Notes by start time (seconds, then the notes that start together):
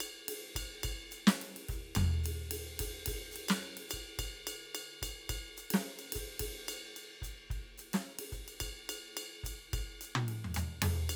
0.01 hi-hat pedal, ride bell
0.28 ride
0.56 kick, hi-hat pedal, ride bell
0.84 kick, ride bell
0.90 kick
1.11 hi-hat pedal, ride bell
1.27 snare
1.42 ride
1.56 ride
1.69 kick, hi-hat pedal, ride, floor tom
1.75 kick
1.95 kick, floor tom, ride bell
2.24 hi-hat pedal, ride
2.51 ride
2.80 kick, hi-hat pedal, ride
3.06 kick, ride
3.14 kick
3.31 hi-hat pedal
3.36 ride
3.49 snare, ride bell
3.77 ride
3.89 hi-hat pedal, ride bell
3.94 kick
4.19 kick, ride bell
4.47 hi-hat pedal, ride bell
4.75 ride bell
5.02 kick, hi-hat pedal, ride bell
5.30 kick, ride bell
5.57 hi-hat pedal, ride bell
5.71 snare, ride
5.99 ride bell
6.13 kick, hi-hat pedal, ride
6.40 kick, ride
6.69 hi-hat pedal, ride bell
6.97 ride bell
7.22 kick, hi-hat pedal, ride bell
7.50 kick, ride bell
7.59 kick
7.78 hi-hat pedal, ride
7.94 snare, ride bell
8.19 ride
8.32 kick, hi-hat pedal
8.48 ride bell
8.61 kick, ride bell
8.89 hi-hat pedal, ride bell
9.17 ride bell
9.44 kick, hi-hat pedal, ride bell
9.73 kick, cross-stick, ride bell
9.80 kick
9.83 kick
10.01 hi-hat pedal, ride bell
10.15 mid tom
10.28 ride
10.45 floor tom
10.55 hi-hat pedal, ride bell, floor tom
10.82 ride, floor tom
11.10 hi-hat pedal, ride bell